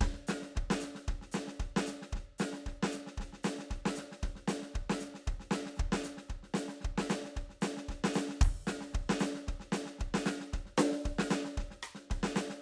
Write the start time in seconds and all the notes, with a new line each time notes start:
0.01 kick, snare
0.13 snare
0.27 snare, hi-hat pedal
0.42 snare
0.55 kick, snare
0.70 snare
0.80 snare, hi-hat pedal
0.95 snare
1.08 kick, snare
1.22 snare
1.32 snare, hi-hat pedal
1.47 snare
1.60 kick, snare
1.77 snare
1.86 snare, hi-hat pedal
2.02 snare
2.13 kick, snare
2.39 snare, hi-hat pedal
2.53 snare
2.66 kick, snare
2.83 snare
2.92 snare, hi-hat pedal
3.07 snare
3.18 kick, snare
3.33 snare
3.44 snare, hi-hat pedal
3.59 snare
3.71 kick, snare
3.86 snare
3.96 snare, hi-hat pedal
4.12 snare
4.23 kick, snare
4.36 snare
4.48 snare, hi-hat pedal
4.62 snare
4.74 kick, snare
4.90 snare
5.00 snare, hi-hat pedal
5.14 snare
5.23 snare, hi-hat pedal
5.28 kick
5.40 snare
5.51 snare, hi-hat pedal
5.66 snare
5.76 snare, hi-hat pedal
5.80 kick
5.92 snare
6.04 snare, hi-hat pedal
6.17 snare
6.27 kick, snare, hi-hat pedal
6.43 snare
6.54 snare, hi-hat pedal
6.68 snare
6.81 snare
6.85 kick
6.98 snare
7.10 snare, hi-hat pedal
7.24 snare
7.36 kick, snare
7.50 snare
7.62 snare, hi-hat pedal
7.77 snare
7.89 kick, snare
8.04 snare
8.14 snare, hi-hat pedal
8.29 snare
8.37 kick, hi-hat pedal
8.43 ride
8.67 snare, hi-hat pedal
8.81 snare
8.91 kick, snare, hi-hat pedal
9.10 snare
9.19 snare, hi-hat pedal
9.35 snare
9.47 kick, snare
9.60 snare
9.72 snare, hi-hat pedal
9.86 snare
9.99 kick, snare
10.14 snare
10.26 snare, hi-hat pedal
10.41 snare
10.53 kick, snare
10.66 snare
10.78 snare, hi-hat pedal
10.92 snare
11.05 kick, snare
11.19 snare
11.30 snare, hi-hat pedal
11.45 snare
11.58 kick, snare
11.71 snare
11.83 cross-stick, hi-hat pedal
11.95 snare
12.10 kick, snare
12.23 snare
12.36 snare, hi-hat pedal
12.50 snare